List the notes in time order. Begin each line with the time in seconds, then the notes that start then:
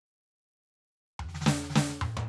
1.19 mid tom
1.28 snare
1.34 snare
1.41 snare
1.46 snare
1.59 snare
1.63 snare
1.70 snare
1.75 snare
1.89 snare
2.01 high tom
2.17 high tom